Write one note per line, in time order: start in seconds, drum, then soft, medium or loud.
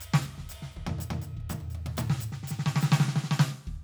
0.01 ride medium
0.01 percussion loud
0.14 snare loud
0.19 cross-stick medium
0.19 percussion medium
0.26 ride soft
0.38 kick soft
0.38 snare soft
0.49 ride medium
0.49 percussion medium
0.63 snare medium
0.72 percussion soft
0.77 kick soft
0.77 mid tom medium
0.87 mid tom loud
0.99 mid tom medium
0.99 percussion loud
1.11 mid tom loud
1.22 mid tom medium
1.22 percussion medium
1.37 kick soft
1.37 high tom soft
1.42 kick soft
1.50 mid tom loud
1.50 percussion loud
1.61 high tom soft
1.71 percussion soft
1.75 high tom medium
1.86 high tom loud
1.97 high tom loud
1.97 percussion loud
2.10 snare loud
2.21 percussion loud
2.32 snare medium
2.43 snare medium
2.48 snare medium
2.48 percussion loud
2.59 snare medium
2.66 snare medium
2.76 snare loud
2.81 snare loud
2.81 percussion medium
2.92 snare loud
3.00 snare loud
3.08 snare medium
3.16 snare loud
3.24 snare medium
3.31 snare loud
3.40 snare loud
3.50 snare soft
3.67 kick medium